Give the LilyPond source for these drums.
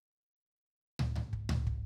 \new DrumStaff \drummode { \time 4/4 \tempo 4 = 122 r4 r4 \tuplet 3/2 { <tommh tomfh>8 <tomfh tommh>8 bd8 <tomfh tommh>8 bd8 r8 } | }